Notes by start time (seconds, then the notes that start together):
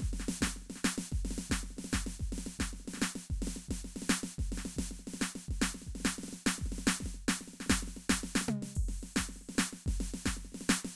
0.01 kick, snare
0.09 kick
0.14 snare
0.20 snare
0.27 snare, hi-hat pedal
0.41 kick, snare
0.48 snare
0.57 snare
0.62 snare
0.70 snare
0.76 snare
0.84 snare, hi-hat pedal
0.98 snare
1.12 kick, snare
1.20 kick
1.25 snare
1.31 snare
1.36 snare, hi-hat pedal
1.50 kick, snare
1.64 snare
1.71 snare
1.77 snare
1.85 snare
1.90 kick, snare, hi-hat pedal
1.99 kick
2.07 snare
2.20 kick, snare
2.27 kick
2.33 snare
2.38 snare
2.43 snare, hi-hat pedal
2.60 kick, snare
2.65 kick
2.73 snare
2.80 snare
2.85 snare
2.88 snare
2.94 snare
2.98 snare, hi-hat pedal
3.02 snare
3.16 snare
3.31 kick, snare
3.37 kick
3.42 snare
3.48 snare
3.53 snare, hi-hat pedal
3.69 kick, snare
3.85 snare
3.96 snare
4.02 snare
4.07 snare, hi-hat pedal
4.24 snare
4.39 kick, snare
4.45 kick
4.52 snare
4.58 snare, hi-hat pedal
4.66 snare
4.77 kick, snare
4.91 snare
5.00 snare
5.08 snare
5.14 snare, hi-hat pedal
5.21 snare
5.36 snare
5.49 kick, snare
5.62 snare
5.70 hi-hat pedal
5.75 snare
5.82 snare
5.87 kick, snare
5.96 snare
6.01 snare
6.05 snare
6.19 snare
6.24 snare
6.32 snare, hi-hat pedal
6.47 snare
6.59 kick, snare
6.66 kick, snare
6.72 snare
6.79 snare
6.87 snare, hi-hat pedal
7.01 kick, snare
7.06 snare
7.15 snare
7.29 snare
7.41 snare, hi-hat pedal
7.48 snare
7.54 snare
7.61 snare
7.67 snare
7.70 kick, snare
7.83 snare
7.88 snare
7.94 snare, hi-hat pedal
8.10 kick, snare
8.24 snare
8.36 snare
8.42 snare
8.48 hi-hat pedal, mid tom
8.63 snare
8.76 kick, crash
8.85 kick
8.89 kick, snare
9.00 snare, hi-hat pedal
9.17 kick, snare
9.29 snare
9.36 snare
9.42 snare
9.49 snare
9.56 snare, hi-hat pedal
9.59 snare
9.73 snare
9.87 kick, snare
9.93 kick
10.01 snare
10.11 snare, hi-hat pedal
10.26 kick, snare
10.32 kick
10.37 snare
10.45 snare
10.52 snare
10.55 snare
10.61 snare
10.67 snare, hi-hat pedal
10.85 snare